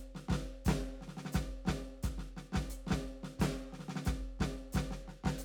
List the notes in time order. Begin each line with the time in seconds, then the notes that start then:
0.16 snare
0.29 kick, snare
0.32 snare
0.66 kick, snare, hi-hat pedal
0.69 snare
1.02 snare
1.08 snare
1.18 snare
1.26 snare
1.33 kick, snare, hi-hat pedal
1.66 snare
1.68 kick, snare
2.03 kick, snare, hi-hat pedal
2.19 snare
2.37 snare
2.53 snare
2.55 kick, snare
2.71 hi-hat pedal
2.87 snare
2.91 kick, snare
3.24 snare
3.40 kick, snare, hi-hat pedal
3.42 snare
3.73 snare
3.80 snare
3.89 snare
3.96 snare
4.06 kick, snare, hi-hat pedal
4.40 kick, snare
4.41 snare
4.73 kick, snare, hi-hat pedal
4.77 snare
4.92 snare
5.08 snare
5.25 kick, snare
5.26 snare
5.39 hi-hat pedal